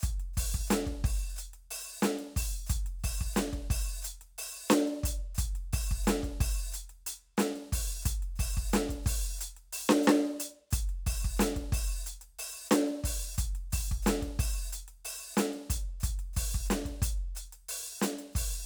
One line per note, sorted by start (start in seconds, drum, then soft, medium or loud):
0.01 closed hi-hat medium
0.01 kick medium
0.01 hi-hat pedal medium
0.20 closed hi-hat soft
0.34 open hi-hat loud
0.34 kick medium
0.34 hi-hat pedal soft
0.55 kick medium
0.68 closed hi-hat loud
0.68 snare loud
0.68 hi-hat pedal medium
0.87 kick medium
0.87 closed hi-hat soft
1.04 open hi-hat loud
1.04 kick medium
1.36 closed hi-hat medium
1.36 hi-hat pedal medium
1.54 closed hi-hat soft
1.71 open hi-hat loud
2.01 closed hi-hat loud
2.01 snare loud
2.01 hi-hat pedal medium
2.19 closed hi-hat soft
2.36 open hi-hat loud
2.36 kick medium
2.36 hi-hat pedal soft
2.67 closed hi-hat loud
2.67 kick medium
2.67 hi-hat pedal medium
2.87 closed hi-hat soft
2.99 hi-hat pedal soft
3.04 open hi-hat loud
3.04 kick medium
3.21 kick medium
3.34 closed hi-hat loud
3.34 snare loud
3.34 hi-hat pedal medium
3.53 kick medium
3.53 closed hi-hat soft
3.71 open hi-hat loud
3.71 kick medium
4.03 closed hi-hat loud
4.03 hi-hat pedal medium
4.22 closed hi-hat soft
4.38 open hi-hat loud
4.68 closed hi-hat loud
4.68 snare loud
4.68 hi-hat pedal medium
4.88 closed hi-hat soft
5.04 open hi-hat loud
5.04 kick medium
5.35 closed hi-hat loud
5.35 kick medium
5.35 hi-hat pedal medium
5.56 closed hi-hat soft
5.73 open hi-hat loud
5.73 kick medium
5.91 kick medium
6.04 closed hi-hat loud
6.04 snare loud
6.04 hi-hat pedal medium
6.23 kick medium
6.23 closed hi-hat soft
6.41 open hi-hat loud
6.41 kick medium
6.72 closed hi-hat loud
6.72 hi-hat pedal medium
6.90 closed hi-hat soft
7.07 open hi-hat loud
7.38 closed hi-hat loud
7.38 snare loud
7.38 hi-hat pedal medium
7.56 closed hi-hat soft
7.73 open hi-hat loud
7.73 kick medium
8.03 closed hi-hat loud
8.03 kick medium
8.03 hi-hat pedal medium
8.23 closed hi-hat soft
8.36 open hi-hat loud
8.36 kick medium
8.36 hi-hat pedal soft
8.57 kick medium
8.70 closed hi-hat loud
8.70 hi-hat pedal medium
8.74 snare loud
8.90 kick soft
8.90 closed hi-hat medium
9.04 open hi-hat loud
9.04 kick medium
9.04 hi-hat pedal soft
9.39 closed hi-hat loud
9.39 hi-hat pedal medium
9.57 closed hi-hat soft
9.73 open hi-hat loud
9.90 snare loud
10.03 hi-hat pedal medium
10.08 snare loud
10.40 closed hi-hat loud
10.71 closed hi-hat loud
10.71 kick medium
10.71 hi-hat pedal medium
10.89 closed hi-hat soft
11.07 open hi-hat loud
11.07 kick medium
11.25 kick medium
11.37 closed hi-hat loud
11.37 snare loud
11.37 hi-hat pedal medium
11.56 kick soft
11.56 closed hi-hat soft
11.73 open hi-hat loud
11.73 kick medium
12.04 closed hi-hat medium
12.04 hi-hat pedal soft
12.22 closed hi-hat medium
12.39 open hi-hat loud
12.67 hi-hat pedal medium
12.71 closed hi-hat loud
12.71 snare loud
12.88 closed hi-hat soft
13.04 open hi-hat loud
13.04 kick medium
13.35 closed hi-hat loud
13.35 kick medium
13.35 hi-hat pedal medium
13.55 closed hi-hat soft
13.71 open hi-hat loud
13.71 kick medium
13.71 hi-hat pedal soft
13.92 kick medium
14.03 snare loud
14.03 hi-hat pedal medium
14.07 closed hi-hat loud
14.23 kick soft
14.23 closed hi-hat soft
14.36 kick medium
14.36 hi-hat pedal soft
14.40 open hi-hat loud
14.70 closed hi-hat loud
14.70 hi-hat pedal soft
14.88 closed hi-hat soft
15.05 open hi-hat loud
15.34 closed hi-hat loud
15.34 snare loud
15.34 hi-hat pedal medium
15.54 closed hi-hat soft
15.70 open hi-hat loud
15.70 kick medium
16.01 closed hi-hat loud
16.01 kick medium
16.01 hi-hat pedal medium
16.19 closed hi-hat soft
16.34 open hi-hat loud
16.34 kick medium
16.34 hi-hat pedal soft
16.55 kick medium
16.66 hi-hat pedal medium
16.71 closed hi-hat medium
16.71 snare loud
16.86 kick soft
16.86 closed hi-hat soft
17.02 open hi-hat loud
17.02 kick medium
17.35 closed hi-hat medium
17.35 hi-hat pedal medium
17.53 closed hi-hat medium
17.69 open hi-hat loud
18.00 closed hi-hat loud
18.00 snare loud
18.00 hi-hat pedal medium
18.19 closed hi-hat medium
18.33 open hi-hat loud
18.33 kick medium
18.33 hi-hat pedal soft